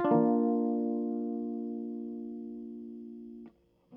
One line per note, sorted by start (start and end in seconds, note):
0.00 3.52 F4
0.05 3.53 D4
0.12 0.22 E3
0.12 3.52 A#3